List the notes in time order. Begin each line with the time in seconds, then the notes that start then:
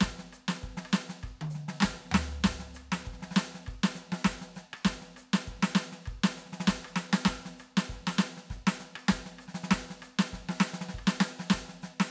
0.01 kick, snare
0.08 kick
0.19 snare
0.33 cross-stick, hi-hat pedal
0.48 snare
0.55 snare
0.63 kick, snare
0.69 snare
0.73 snare
0.77 snare
0.85 cross-stick
0.92 snare, hi-hat pedal
1.09 snare
1.23 kick, cross-stick
1.41 high tom
1.51 hi-hat pedal
1.55 snare
1.69 snare
1.81 snare
1.83 kick, snare
2.12 snare, hi-hat pedal, floor tom
2.44 kick, snare
2.60 snare
2.74 cross-stick, hi-hat pedal
2.92 snare
3.04 kick, snare
3.13 snare
3.19 snare
3.23 snare
3.31 snare, hi-hat pedal
3.36 snare
3.55 snare
3.67 kick, cross-stick
3.84 snare
3.94 snare, hi-hat pedal
4.12 snare
4.25 kick, snare
4.42 snare
4.56 snare, hi-hat pedal
4.73 cross-stick
4.85 kick, snare
5.02 snare
5.17 cross-stick, hi-hat pedal
5.34 snare
5.46 kick, snare
5.63 snare
5.70 snare
5.75 snare, hi-hat pedal
5.92 snare
6.06 kick, cross-stick
6.24 snare
6.37 snare, hi-hat pedal
6.46 snare
6.53 snare
6.60 snare
6.68 kick, snare
6.85 cross-stick
6.96 snare, hi-hat pedal
7.13 snare
7.25 kick, snare
7.46 snare
7.59 cross-stick, hi-hat pedal
7.77 snare
7.89 kick, snare
8.07 snare
8.19 snare, hi-hat pedal
8.37 snare
8.50 kick, snare
8.67 snare
8.79 snare, hi-hat pedal
8.96 cross-stick
9.09 kick, snare
9.26 snare
9.39 cross-stick, hi-hat pedal
9.48 snare
9.55 snare
9.64 snare
9.71 kick, snare
9.90 snare
10.02 cross-stick, hi-hat pedal
10.19 snare
10.33 kick, snare
10.49 snare
10.60 snare, hi-hat pedal
10.74 snare
10.81 snare
10.89 snare
10.94 kick
10.99 cross-stick
11.07 snare
11.21 snare, hi-hat pedal
11.40 snare
11.50 kick, snare
11.69 snare
11.83 snare, hi-hat pedal
12.00 snare